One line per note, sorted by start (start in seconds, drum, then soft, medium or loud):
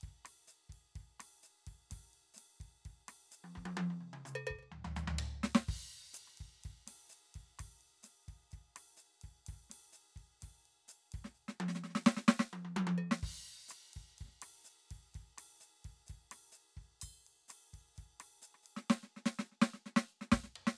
0.01 kick soft
0.01 hi-hat pedal soft
0.01 ride soft
0.08 kick soft
0.25 cross-stick soft
0.25 snare soft
0.25 ride medium
0.48 hi-hat pedal medium
0.48 ride soft
0.70 kick soft
0.70 ride soft
0.96 kick soft
0.96 hi-hat pedal soft
0.96 ride soft
1.01 kick soft
1.20 cross-stick soft
1.20 snare soft
1.20 ride medium
1.43 hi-hat pedal medium
1.43 ride soft
1.67 kick soft
1.67 ride soft
1.91 kick soft
1.91 snare soft
1.91 ride medium
1.97 kick soft
2.13 ride soft
2.34 snare soft
2.34 hi-hat pedal medium
2.38 ride medium
2.60 kick soft
2.60 ride soft
2.85 kick soft
2.85 ride soft
3.08 cross-stick soft
3.08 snare soft
3.08 ride medium
3.31 hi-hat pedal medium
3.31 ride soft
3.44 high tom soft
3.56 kick soft
3.56 high tom soft
3.66 high tom medium
3.77 high tom loud
3.90 high tom soft
4.01 mid tom soft
4.13 mid tom medium
4.25 hi-hat pedal medium
4.25 mid tom medium
4.35 percussion loud
4.47 kick soft
4.47 percussion loud
4.55 kick soft
4.55 percussion soft
4.63 percussion soft
4.72 floor tom soft
4.85 floor tom medium
4.96 floor tom medium
4.96 hi-hat pedal medium
5.08 floor tom medium
5.19 floor tom loud
5.44 snare medium
5.55 snare loud
5.68 kick soft
5.68 crash medium
5.75 kick soft
6.14 hi-hat pedal loud
6.14 ride medium
6.28 cross-stick soft
6.38 kick soft
6.38 ride soft
6.60 hi-hat pedal soft
6.60 ride soft
6.65 kick soft
6.70 kick soft
6.87 snare soft
6.87 ride medium
7.09 hi-hat pedal medium
7.09 ride soft
7.35 kick soft
7.35 ride soft
7.58 kick soft
7.58 cross-stick soft
7.58 snare soft
7.58 ride medium
7.65 kick soft
7.81 ride soft
8.03 snare soft
8.03 hi-hat pedal medium
8.03 ride medium
8.28 kick soft
8.28 ride soft
8.51 kick soft
8.51 hi-hat pedal soft
8.51 ride soft
8.76 cross-stick soft
8.76 snare soft
8.76 ride medium
8.97 hi-hat pedal medium
8.97 ride soft
9.22 kick soft
9.22 ride soft
9.45 kick soft
9.45 hi-hat pedal soft
9.45 ride medium
9.54 kick soft
9.70 snare soft
9.70 ride medium
9.93 hi-hat pedal medium
9.93 ride soft
10.16 kick soft
10.16 ride soft
10.40 kick soft
10.40 snare soft
10.40 hi-hat pedal soft
10.40 ride medium
10.66 ride soft
10.88 hi-hat pedal medium
10.88 ride soft
11.12 kick soft
11.12 ride soft
11.19 kick soft
11.25 snare soft
11.34 hi-hat pedal soft
11.48 snare soft
11.60 high tom loud
11.69 snare soft
11.73 snare soft
11.73 hi-hat pedal soft
11.84 snare soft
11.89 snare soft
11.95 snare medium
12.06 snare loud
12.17 snare medium
12.28 snare loud
12.40 snare medium
12.53 high tom medium
12.65 high tom soft
12.76 high tom loud
12.87 open hi-hat soft
12.87 high tom loud
12.98 percussion medium
13.11 snare medium
13.23 kick soft
13.23 crash medium
13.29 kick soft
13.69 cross-stick soft
13.69 hi-hat pedal loud
13.69 ride medium
13.94 kick soft
13.94 ride soft
14.16 hi-hat pedal soft
14.16 ride soft
14.21 kick soft
14.21 snare soft
14.25 snare soft
14.27 snare soft
14.42 cross-stick soft
14.42 ride medium
14.64 hi-hat pedal medium
14.64 ride soft
14.91 kick soft
14.91 ride soft
14.96 kick soft
15.13 kick soft
15.13 hi-hat pedal soft
15.13 ride soft
15.21 kick soft
15.38 cross-stick soft
15.38 ride medium
15.60 hi-hat pedal medium
15.60 ride soft
15.85 kick soft
15.85 ride soft
16.07 kick soft
16.07 hi-hat pedal soft
16.07 ride soft
16.31 cross-stick soft
16.31 snare soft
16.31 ride medium
16.52 hi-hat pedal medium
16.77 kick soft
17.00 kick soft
17.00 cross-stick soft
17.00 hi-hat pedal soft
17.00 ride bell medium
17.27 ride soft
17.48 cross-stick soft
17.48 snare soft
17.48 hi-hat pedal medium
17.48 ride medium
17.74 kick soft
17.74 ride soft
17.95 kick soft
17.95 hi-hat pedal soft
17.95 ride soft
18.20 cross-stick soft
18.20 ride medium
18.42 hi-hat pedal medium
18.42 ride soft
18.55 cross-stick soft
18.63 hi-hat pedal soft
18.63 ride soft
18.77 snare soft
18.90 snare loud
18.90 hi-hat pedal medium
19.03 snare soft
19.17 snare soft
19.26 snare medium
19.39 snare medium
19.52 snare soft
19.62 snare loud
19.74 snare soft
19.86 snare soft
19.96 snare loud
20.21 snare soft
20.32 kick soft
20.32 snare loud
20.39 kick soft
20.44 snare soft
20.56 floor tom medium
20.67 snare medium